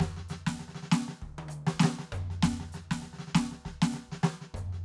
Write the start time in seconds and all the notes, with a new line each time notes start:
0.01 kick, snare
0.11 kick
0.18 snare
0.30 snare, hi-hat pedal
0.47 kick, snare
0.60 snare
0.69 snare
0.76 snare
0.83 snare
0.93 snare, hi-hat pedal
1.09 snare
1.23 kick, high tom
1.29 kick
1.33 kick
1.39 high tom
1.49 hi-hat pedal, high tom
1.68 snare
1.75 kick
1.81 snare
1.84 snare
1.99 snare
2.13 kick, hi-hat pedal, floor tom
2.22 kick
2.31 snare
2.44 kick, snare
2.51 kick
2.61 snare
2.73 snare, hi-hat pedal
2.91 kick, snare
3.03 snare
3.14 snare
3.20 snare
3.28 snare
3.35 kick, snare, hi-hat pedal
3.52 snare
3.66 kick, snare
3.75 kick
3.83 snare
3.92 snare, hi-hat pedal
4.09 kick, snare
4.24 snare
4.42 snare
4.55 kick, floor tom, hi-hat pedal
4.73 snare